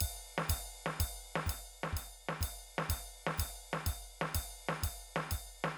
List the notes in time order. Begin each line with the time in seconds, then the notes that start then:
0.01 kick, ride
0.38 snare
0.49 kick, hi-hat pedal, ride
0.86 snare
1.00 kick, ride
1.36 snare
1.47 kick, hi-hat pedal, ride
1.84 snare
1.93 kick
1.97 ride
2.29 snare
2.41 kick, hi-hat pedal, ride
2.79 snare
2.90 kick, ride
3.27 snare
3.38 kick, hi-hat pedal, ride
3.74 snare
3.87 kick, ride
4.22 snare
4.35 kick, hi-hat pedal, ride
4.69 snare
4.83 kick, ride
5.16 snare
5.31 kick, hi-hat pedal, ride
5.65 snare